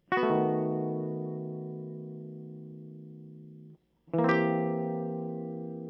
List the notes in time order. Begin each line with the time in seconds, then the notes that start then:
0.12 F#4
0.17 B3
0.23 A3
0.31 D#3
0.37 A2
4.14 E3
4.19 A#3
4.24 C4
4.29 G4